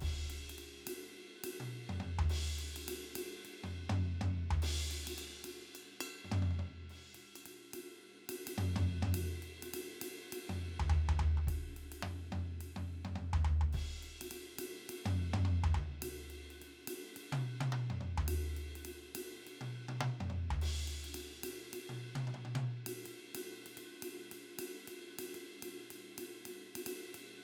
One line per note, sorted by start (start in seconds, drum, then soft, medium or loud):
0.01 kick soft
0.01 ride medium
0.30 ride medium
0.50 ride medium
0.58 ride medium
0.87 ride loud
1.44 ride loud
1.60 high tom medium
1.89 mid tom loud
2.00 mid tom medium
2.19 floor tom loud
2.30 ride loud
2.59 ride medium
2.76 ride medium
2.88 ride loud
3.16 ride loud
3.45 ride medium
3.64 mid tom medium
3.90 mid tom loud
4.21 mid tom loud
4.51 floor tom loud
4.62 ride loud
4.91 ride medium
5.07 ride loud
5.18 ride bell medium
5.44 ride loud
5.75 ride bell medium
6.01 ride bell loud
6.25 mid tom medium
6.32 mid tom loud
6.42 mid tom medium
6.51 mid tom medium
6.59 mid tom medium
6.90 ride medium
7.15 ride medium
7.36 ride bell medium
7.46 ride medium
7.74 ride loud
8.29 ride loud
8.47 ride loud
8.58 mid tom loud
8.76 mid tom loud
9.03 mid tom loud
9.14 ride loud
9.43 ride medium
9.63 ride loud
9.74 ride loud
10.02 ride loud
10.33 ride loud
10.50 mid tom loud
10.80 floor tom loud
10.90 floor tom loud
11.09 floor tom loud
11.19 floor tom loud
11.37 floor tom medium
11.48 kick medium
11.48 ride medium
11.77 ride medium
11.92 ride medium
12.03 mid tom loud
12.32 mid tom loud
12.61 ride medium
12.76 mid tom medium
13.05 mid tom medium
13.16 mid tom medium
13.33 floor tom loud
13.45 floor tom loud
13.61 floor tom medium
13.73 kick medium
13.73 ride medium
14.03 ride soft
14.21 ride loud
14.31 ride loud
14.59 ride loud
14.89 ride loud
15.06 mid tom loud
15.34 mid tom loud
15.45 mid tom loud
15.64 floor tom loud
15.75 floor tom loud
16.02 ride loud
16.30 ride medium
16.51 ride soft
16.62 ride medium
16.88 ride loud
17.16 ride medium
17.33 high tom loud
17.61 high tom loud
17.72 high tom loud
17.90 mid tom medium
18.01 mid tom medium
18.18 floor tom loud
18.28 ride loud
18.57 ride medium
18.76 ride medium
18.85 ride medium
19.15 ride loud
19.47 ride medium
19.61 high tom medium
19.89 high tom loud
20.01 high tom loud
20.21 mid tom loud
20.30 mid tom medium
20.51 floor tom loud
20.62 ride loud
20.88 ride medium
21.05 ride medium
21.15 ride loud
21.44 ride loud
21.73 ride loud
21.89 high tom medium
22.15 high tom loud
22.27 high tom medium
22.34 high tom medium
22.45 high tom medium
22.55 high tom loud
22.87 ride loud
23.06 ride medium
23.35 ride loud
23.66 ride medium
23.77 ride medium
24.03 ride loud
24.32 ride medium
24.59 ride loud
24.88 ride medium
25.19 ride loud
25.35 ride medium
25.63 ride loud
25.91 ride medium
26.18 ride loud
26.46 ride medium
26.76 ride loud
26.87 ride loud
27.15 ride medium